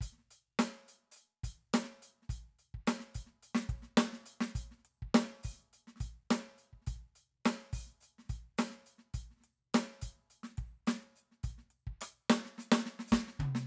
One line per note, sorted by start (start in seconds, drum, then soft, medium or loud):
0.01 closed hi-hat medium
0.01 kick soft
0.13 snare soft
0.18 snare soft
0.31 closed hi-hat soft
0.59 closed hi-hat medium
0.59 snare loud
0.88 closed hi-hat soft
1.12 hi-hat pedal medium
1.16 closed hi-hat soft
1.44 closed hi-hat medium
1.44 kick soft
1.74 closed hi-hat medium
1.74 snare loud
1.84 snare soft
2.03 closed hi-hat soft
2.22 snare soft
2.30 closed hi-hat medium
2.30 kick soft
2.49 kick soft
2.59 closed hi-hat soft
2.74 kick soft
2.87 closed hi-hat medium
2.87 snare loud
3.00 snare soft
3.15 open hi-hat medium
3.15 kick soft
3.26 snare soft
3.43 closed hi-hat soft
3.55 snare loud
3.69 kick soft
3.69 closed hi-hat soft
3.75 kick soft
3.83 snare soft
3.98 snare loud
4.13 snare soft
4.26 closed hi-hat medium
4.41 snare medium
4.55 closed hi-hat medium
4.55 kick soft
4.71 snare soft
4.78 snare soft
4.85 closed hi-hat soft
5.02 kick soft
5.15 open hi-hat medium
5.15 snare loud
5.43 open hi-hat medium
5.43 kick soft
5.52 snare soft
5.73 closed hi-hat soft
5.88 snare soft
5.96 snare soft
6.00 closed hi-hat medium
6.00 kick soft
6.06 kick soft
6.31 open hi-hat medium
6.31 snare loud
6.58 closed hi-hat soft
6.73 kick soft
6.82 snare soft
6.87 closed hi-hat medium
6.87 kick soft
6.96 kick soft
7.16 closed hi-hat soft
7.45 closed hi-hat medium
7.45 snare loud
7.73 open hi-hat medium
7.73 kick soft
7.79 kick soft
7.86 snare soft
8.01 closed hi-hat soft
8.01 hi-hat pedal soft
8.19 snare soft
8.23 snare soft
8.27 closed hi-hat medium
8.27 kick soft
8.27 snare soft
8.35 kick soft
8.58 closed hi-hat medium
8.58 snare medium
8.58 hi-hat pedal soft
8.70 snare soft
8.86 closed hi-hat soft
8.98 snare soft
9.14 closed hi-hat medium
9.14 kick soft
9.31 snare soft
9.37 snare soft
9.40 snare soft
9.40 closed hi-hat soft
9.74 closed hi-hat medium
9.74 snare loud
10.02 closed hi-hat medium
10.02 kick soft
10.30 closed hi-hat soft
10.44 snare soft
10.58 kick soft
10.58 closed hi-hat soft
10.87 closed hi-hat medium
10.87 snare loud
11.00 snare soft
11.16 open hi-hat soft
11.16 hi-hat pedal soft
11.32 snare soft
11.44 closed hi-hat medium
11.44 kick soft
11.50 kick soft
11.58 snare soft
11.71 closed hi-hat soft
11.87 kick soft
12.01 closed hi-hat loud
12.01 cross-stick medium
12.30 snare loud
12.45 snare soft
12.58 snare soft
12.58 hi-hat pedal medium
12.72 snare loud
12.78 snare soft
12.86 snare soft
12.99 snare soft
13.08 hi-hat pedal medium
13.12 kick soft
13.12 snare loud
13.28 snare soft
13.40 kick soft
13.40 mid tom loud
13.55 snare medium